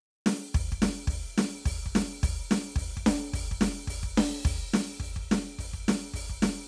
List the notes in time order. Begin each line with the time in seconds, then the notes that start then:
0.26 open hi-hat, snare
0.54 open hi-hat, kick
0.72 kick
0.82 open hi-hat, snare
1.07 open hi-hat, kick
1.38 open hi-hat, snare
1.65 open hi-hat, kick
1.86 kick
1.95 open hi-hat, snare
2.23 open hi-hat, kick
2.51 open hi-hat, snare
2.76 open hi-hat, kick
2.97 kick
3.06 open hi-hat, snare
3.33 open hi-hat, kick
3.51 kick
3.61 open hi-hat, snare
3.87 open hi-hat, kick
4.03 kick
4.17 snare, crash
4.45 open hi-hat, kick
4.74 open hi-hat, snare
5.00 open hi-hat, kick
5.16 kick
5.31 open hi-hat, snare
5.59 open hi-hat, kick
5.73 kick
5.88 open hi-hat, snare
6.14 open hi-hat, kick
6.29 kick
6.42 open hi-hat, snare